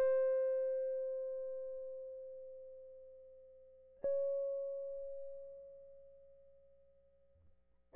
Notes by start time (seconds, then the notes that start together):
0.00 C5
4.05 C#5